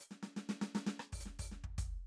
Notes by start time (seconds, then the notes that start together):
0.00 hi-hat pedal
0.11 snare
0.23 snare
0.36 snare
0.49 snare
0.61 snare
0.75 snare
0.87 snare
0.99 cross-stick
1.12 open hi-hat, kick
1.20 hi-hat pedal
1.26 snare
1.39 open hi-hat, kick
1.44 hi-hat pedal
1.51 snare
1.64 kick
1.78 open hi-hat, kick